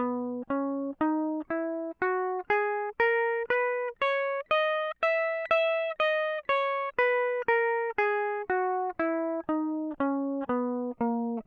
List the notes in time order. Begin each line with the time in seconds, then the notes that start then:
0.00 B3
0.50 C#4
1.01 D#4
1.50 E4
2.02 F#4
2.50 G#4
3.00 A#4
3.50 B4
4.02 C#5
4.51 D#5
5.03 E5
5.51 E5
6.00 D#5
6.49 C#5
6.99 B4
7.48 A#4
7.98 G#4
8.50 F#4
8.99 E4
9.49 D#4
10.00 C#4
10.50 B3
11.01 A#3